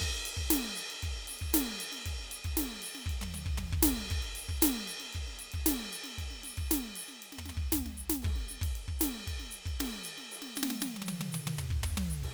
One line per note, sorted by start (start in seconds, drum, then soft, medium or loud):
0.02 kick soft
0.02 ride medium
0.15 snare soft
0.15 ride soft
0.26 hi-hat pedal medium
0.26 ride medium
0.37 kick soft
0.49 snare medium
0.49 hi-hat pedal soft
0.49 ride loud
0.65 snare soft
0.76 hi-hat pedal medium
0.76 ride medium
0.88 snare soft
0.88 ride medium
1.02 kick soft
1.02 hi-hat pedal soft
1.02 ride medium
1.15 snare soft
1.28 snare soft
1.28 hi-hat pedal loud
1.28 ride medium
1.39 kick soft
1.39 ride medium
1.53 snare loud
1.53 hi-hat pedal soft
1.53 ride loud
1.67 snare soft
1.80 hi-hat pedal medium
1.80 ride medium
1.93 snare soft
1.93 ride medium
2.06 kick soft
2.06 ride medium
2.20 snare soft
2.30 snare soft
2.30 hi-hat pedal loud
2.30 ride medium
2.45 kick soft
2.45 ride medium
2.56 snare medium
2.56 hi-hat pedal soft
2.56 ride medium
2.73 snare soft
2.82 hi-hat pedal loud
2.82 ride medium
2.95 snare soft
3.06 kick soft
3.06 ride medium
3.22 floor tom medium
3.22 high tom medium
3.34 hi-hat pedal medium
3.34 high tom medium
3.46 kick soft
3.58 floor tom medium
3.58 hi-hat pedal soft
3.58 high tom medium
3.73 kick medium
3.83 snare loud
3.83 hi-hat pedal medium
3.83 ride medium
4.01 snare soft
4.09 kick medium
4.09 hi-hat pedal soft
4.09 ride medium
4.23 ride medium
4.28 snare soft
4.36 hi-hat pedal medium
4.36 ride medium
4.49 kick soft
4.61 snare loud
4.61 hi-hat pedal soft
4.61 ride medium
4.77 snare soft
4.88 hi-hat pedal medium
4.88 ride medium
5.00 snare soft
5.00 ride medium
5.13 kick soft
5.13 hi-hat pedal soft
5.13 ride medium
5.28 snare soft
5.38 snare soft
5.38 hi-hat pedal medium
5.38 ride medium
5.52 kick soft
5.52 ride medium
5.65 snare medium
5.65 hi-hat pedal soft
5.65 ride medium
5.81 snare soft
5.93 hi-hat pedal medium
5.93 ride medium
6.04 snare soft
6.04 ride medium
6.18 kick soft
6.18 hi-hat pedal soft
6.18 ride medium
6.31 snare soft
6.44 snare soft
6.44 hi-hat pedal medium
6.44 ride medium
6.58 kick soft
6.58 ride medium
6.71 snare medium
6.71 ride medium
6.86 snare soft
6.96 hi-hat pedal loud
6.96 ride medium
7.09 snare soft
7.23 ride medium
7.33 snare soft
7.39 floor tom medium
7.46 snare soft
7.46 floor tom medium
7.46 hi-hat pedal soft
7.57 kick soft
7.73 snare medium
7.73 floor tom medium
7.86 snare soft
7.98 hi-hat pedal medium
8.10 snare medium
8.23 kick medium
8.23 ride medium
8.36 snare soft
8.49 snare soft
8.49 hi-hat pedal loud
8.62 kick medium
8.62 ride medium
8.76 ride medium
8.88 kick soft
9.00 snare medium
9.00 hi-hat pedal medium
9.00 ride medium
9.16 snare soft
9.27 kick soft
9.27 ride medium
9.40 snare soft
9.51 hi-hat pedal medium
9.51 ride medium
9.66 kick soft
9.66 ride soft
9.80 snare medium
9.80 ride medium
9.96 snare soft
10.04 hi-hat pedal medium
10.04 ride medium
10.18 snare soft
10.32 hi-hat pedal medium
10.32 ride medium
10.42 snare soft
10.56 snare medium
10.56 hi-hat pedal loud
10.63 snare medium
10.71 snare medium
10.81 snare medium
10.81 hi-hat pedal loud
10.97 high tom medium
11.02 hi-hat pedal medium
11.02 high tom medium
11.09 high tom medium
11.21 high tom medium
11.33 hi-hat pedal loud
11.33 mid tom medium
11.48 mid tom loud
11.58 floor tom medium
11.58 hi-hat pedal medium
11.71 kick soft
11.84 floor tom loud
11.84 hi-hat pedal medium
11.98 high tom loud
12.11 hi-hat pedal medium
12.23 kick soft
12.23 ride medium